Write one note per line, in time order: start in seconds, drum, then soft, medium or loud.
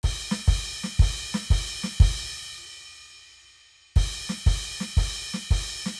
0.03 kick medium
0.03 crash loud
0.31 snare medium
0.47 kick medium
0.47 crash loud
0.84 snare medium
0.99 kick loud
0.99 crash loud
1.34 snare medium
1.51 kick medium
1.51 crash loud
1.84 snare medium
2.00 kick loud
2.00 crash loud
3.96 kick medium
3.96 crash loud
4.29 snare medium
4.46 kick medium
4.46 crash loud
4.81 snare medium
4.97 kick medium
4.97 crash loud
5.34 snare medium
5.51 kick medium
5.51 crash loud
5.86 snare medium